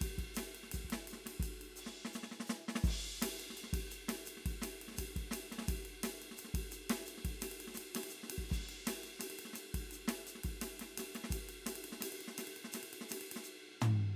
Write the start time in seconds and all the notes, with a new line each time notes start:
0.01 kick, hi-hat pedal, ride
0.19 kick, ride
0.35 snare, hi-hat pedal, ride
0.55 ride
0.64 snare
0.72 kick, hi-hat pedal, ride
0.85 kick
0.91 snare, ride
1.08 hi-hat pedal, ride
1.13 snare
1.26 snare, ride
1.40 kick, hi-hat pedal, ride
1.62 ride
1.76 hi-hat pedal, ride
1.87 snare
2.05 snare
2.13 snare, hi-hat pedal
2.23 snare
2.32 snare
2.40 snare
2.47 snare, hi-hat pedal
2.69 snare
2.76 snare
2.84 kick, hi-hat pedal, ride
3.21 snare, hi-hat pedal, ride
3.40 ride
3.48 kick, snare
3.57 hi-hat pedal, ride
3.64 snare
3.73 kick, ride
3.91 hi-hat pedal, ride
4.09 snare, ride
4.26 hi-hat pedal, ride
4.37 snare
4.46 kick, ride
4.62 snare, hi-hat pedal, ride
4.82 ride
4.88 snare
4.92 snare
4.94 snare
4.95 kick, snare, hi-hat pedal, ride
5.16 kick, ride
5.31 snare, hi-hat pedal, ride
5.52 snare, ride
5.59 snare
5.62 snare
5.68 kick, hi-hat pedal, ride
5.86 ride
6.04 snare, hi-hat pedal, ride
6.22 ride
6.31 snare
6.37 hi-hat pedal, ride
6.45 snare
6.54 kick, ride
6.72 hi-hat pedal, ride
6.90 snare, ride
7.06 hi-hat pedal, ride
7.18 snare
7.25 kick, ride
7.41 snare, hi-hat pedal, ride
7.52 ride
7.61 ride
7.68 snare
7.74 snare, hi-hat pedal, ride
7.95 snare, ride
8.04 ride
8.10 hi-hat pedal
8.14 ride
8.24 snare
8.30 ride
8.38 kick
8.50 kick, hi-hat pedal, ride
8.69 ride
8.87 snare, hi-hat pedal, ride
9.04 ride
9.20 snare, hi-hat pedal, ride
9.30 ride
9.39 ride
9.45 snare
9.54 snare, hi-hat pedal, ride
9.74 kick, ride
9.91 hi-hat pedal, ride
10.08 snare, ride
10.27 hi-hat pedal, ride
10.36 snare
10.44 kick, ride
10.62 snare, hi-hat pedal, ride
10.80 snare, ride
10.98 snare, hi-hat pedal, ride
11.15 snare, ride
11.24 snare
11.31 kick, hi-hat pedal, ride
11.49 ride
11.66 snare, hi-hat pedal, ride
11.76 ride
11.85 ride
11.93 snare
12.01 snare, hi-hat pedal, ride
12.13 ride
12.21 ride
12.28 snare
12.38 snare, hi-hat pedal, ride
12.48 ride
12.57 ride
12.65 snare
12.72 snare, hi-hat pedal, ride
12.83 ride
12.93 ride
13.01 snare
13.09 snare, hi-hat pedal, ride
13.21 ride
13.32 ride
13.36 snare
13.44 hi-hat pedal
13.81 floor tom, hi-hat pedal